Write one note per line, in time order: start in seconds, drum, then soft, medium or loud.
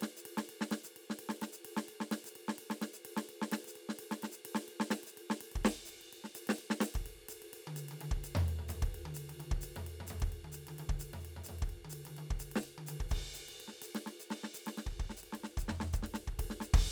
0.01 snare medium
0.01 ride medium
0.17 hi-hat pedal medium
0.25 ride medium
0.37 snare medium
0.37 ride medium
0.49 ride medium
0.61 snare medium
0.71 snare medium
0.71 ride medium
0.84 hi-hat pedal medium
0.84 ride medium
0.96 ride medium
1.03 hi-hat pedal soft
1.10 snare medium
1.19 ride medium
1.29 snare medium
1.29 ride soft
1.42 snare medium
1.52 hi-hat pedal medium
1.65 ride medium
1.72 hi-hat pedal soft
1.77 snare medium
1.77 ride soft
1.88 ride medium
2.00 snare medium
2.11 snare medium
2.11 ride medium
2.24 hi-hat pedal medium
2.24 ride medium
2.35 ride medium
2.46 snare medium
2.46 hi-hat pedal soft
2.58 ride medium
2.70 snare medium
2.70 ride soft
2.81 snare medium
2.81 ride medium
2.93 hi-hat pedal medium
3.05 ride medium
3.12 hi-hat pedal soft
3.17 snare medium
3.17 ride medium
3.29 ride medium
3.42 snare medium
3.52 snare medium
3.52 ride medium
3.64 hi-hat pedal medium
3.64 ride soft
3.76 ride soft
3.89 snare medium
3.99 ride medium
4.11 snare medium
4.11 ride soft
4.22 snare medium
4.22 ride medium
4.32 hi-hat pedal medium
4.45 ride medium
4.55 snare medium
4.55 ride medium
4.68 ride soft
4.80 snare medium
4.90 snare medium
4.90 ride medium
5.03 hi-hat pedal medium
5.03 ride medium
5.17 ride medium
5.30 snare medium
5.41 ride medium
5.52 kick medium
5.52 ride soft
5.64 snare loud
5.64 ride medium
5.85 hi-hat pedal medium
5.85 ride soft
6.01 ride soft
6.13 ride medium
6.24 snare soft
6.35 hi-hat pedal medium
6.35 ride medium
6.47 snare medium
6.47 ride medium
6.58 ride soft
6.70 snare medium
6.80 snare medium
6.80 hi-hat pedal medium
6.80 ride medium
6.94 kick medium
6.94 ride medium
7.04 hi-hat pedal soft
7.04 ride medium
7.29 hi-hat pedal medium
7.29 ride medium
7.42 ride soft
7.53 ride medium
7.67 high tom medium
7.76 hi-hat pedal medium
7.76 ride medium
7.89 high tom medium
7.89 ride medium
8.01 high tom medium
8.01 ride medium
8.11 kick medium
8.24 hi-hat pedal medium
8.24 ride medium
8.35 floor tom loud
8.35 ride medium
8.48 ride medium
8.59 floor tom soft
8.68 floor tom medium
8.68 hi-hat pedal medium
8.68 ride medium
8.82 kick medium
8.82 ride soft
8.94 ride medium
9.05 high tom medium
9.14 hi-hat pedal medium
9.14 ride medium
9.29 high tom soft
9.29 ride medium
9.40 high tom medium
9.40 ride medium
9.51 kick medium
9.61 hi-hat pedal medium
9.61 ride medium
9.76 floor tom medium
9.76 ride soft
9.87 ride medium
10.00 floor tom medium
10.07 floor tom medium
10.07 hi-hat pedal medium
10.07 ride medium
10.20 kick medium
10.20 ride soft
10.27 hi-hat pedal soft
10.32 ride soft
10.44 high tom medium
10.52 hi-hat pedal medium
10.52 ride medium
10.67 high tom medium
10.67 ride medium
10.73 hi-hat pedal soft
10.78 high tom medium
10.78 ride medium
10.89 kick medium
10.99 hi-hat pedal medium
10.99 ride medium
11.13 floor tom medium
11.13 ride soft
11.20 hi-hat pedal soft
11.25 ride medium
11.36 floor tom soft
11.44 hi-hat pedal medium
11.44 ride medium
11.49 floor tom medium
11.59 kick medium
11.59 ride soft
11.64 hi-hat pedal soft
11.69 ride soft
11.85 high tom medium
11.90 hi-hat pedal medium
11.90 ride medium
12.05 high tom medium
12.05 ride medium
12.17 high tom medium
12.17 ride soft
12.30 kick medium
12.39 hi-hat pedal medium
12.39 ride medium
12.52 ride medium
12.56 snare medium
12.60 hi-hat pedal soft
12.60 ride soft
12.78 high tom medium
12.86 hi-hat pedal medium
12.86 high tom medium
12.86 ride medium
13.00 kick medium
13.09 kick medium
13.09 hi-hat pedal soft
13.09 ride medium
13.34 hi-hat pedal medium
13.34 ride soft
13.49 ride medium
13.60 ride medium
13.68 snare soft
13.82 hi-hat pedal medium
13.82 ride medium
13.95 snare medium
13.95 ride medium
14.06 snare soft
14.06 ride soft
14.20 hi-hat pedal medium
14.30 snare medium
14.30 ride medium
14.43 snare soft
14.54 hi-hat pedal medium
14.54 ride medium
14.66 snare soft
14.66 ride medium
14.77 snare soft
14.77 ride soft
14.86 kick medium
14.99 kick medium
14.99 ride soft
15.10 snare soft
15.17 hi-hat pedal medium
15.23 ride soft
15.33 snare soft
15.33 ride soft
15.44 snare soft
15.44 ride soft
15.57 kick medium
15.57 hi-hat pedal medium
15.68 snare medium
15.68 floor tom medium
15.80 snare medium
15.80 floor tom medium
15.93 kick medium
15.93 hi-hat pedal medium
16.03 snare soft
16.03 ride medium
16.14 snare medium
16.14 ride soft
16.27 kick medium
16.39 kick medium
16.39 ride medium
16.50 snare soft
16.60 snare soft
16.60 hi-hat pedal medium
16.74 kick loud
16.74 ride loud